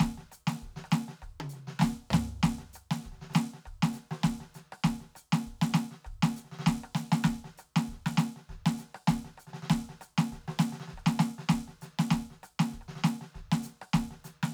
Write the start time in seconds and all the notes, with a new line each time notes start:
0.01 kick, snare
0.08 kick
0.19 snare
0.33 cross-stick, hi-hat pedal
0.48 snare
0.55 snare
0.63 kick, snare
0.69 snare
0.73 snare
0.77 snare
0.85 cross-stick
0.92 snare, hi-hat pedal
1.09 snare
1.23 kick, cross-stick
1.41 high tom
1.51 hi-hat pedal
1.55 snare
1.69 snare
1.81 snare
1.83 kick, snare
2.12 snare, hi-hat pedal, floor tom
2.44 kick, snare
2.60 snare
2.74 cross-stick, hi-hat pedal
2.92 snare
3.04 kick, snare
3.13 snare
3.19 snare
3.23 snare
3.31 snare, hi-hat pedal
3.36 snare
3.55 snare
3.67 kick, cross-stick
3.84 snare
3.94 snare, hi-hat pedal
4.12 snare
4.25 kick, snare
4.42 snare
4.56 snare, hi-hat pedal
4.73 cross-stick
4.85 kick, snare
5.02 snare
5.17 cross-stick, hi-hat pedal
5.34 snare
5.46 kick, snare
5.63 snare
5.70 snare
5.75 snare, hi-hat pedal
5.92 snare
6.06 kick, cross-stick
6.24 snare
6.37 snare, hi-hat pedal
6.46 snare
6.53 snare
6.60 snare
6.68 kick, snare
6.85 cross-stick
6.96 snare, hi-hat pedal
7.13 snare
7.25 kick, snare
7.46 snare
7.59 cross-stick, hi-hat pedal
7.77 snare
7.89 kick, snare
8.07 snare
8.19 snare, hi-hat pedal
8.37 snare
8.50 kick, snare
8.67 snare
8.79 snare, hi-hat pedal
8.96 cross-stick
9.09 kick, snare
9.26 snare
9.39 cross-stick, hi-hat pedal
9.48 snare
9.55 snare
9.64 snare
9.71 kick, snare
9.90 snare
10.02 cross-stick, hi-hat pedal
10.19 snare
10.33 kick, snare
10.49 snare
10.60 snare, hi-hat pedal
10.74 snare
10.81 snare
10.89 snare
10.94 kick
10.99 cross-stick
11.07 snare
11.21 snare, hi-hat pedal
11.40 snare
11.50 kick, snare
11.69 snare
11.83 snare, hi-hat pedal
12.00 snare
12.12 kick, snare
12.32 snare
12.44 cross-stick, hi-hat pedal
12.61 snare
12.73 kick, snare
12.82 cross-stick
12.89 snare
12.97 snare
13.05 snare, hi-hat pedal
13.22 snare
13.36 kick, snare
13.53 snare
13.64 snare, hi-hat pedal
13.83 cross-stick
13.95 kick, snare
14.12 snare
14.26 snare, hi-hat pedal
14.44 snare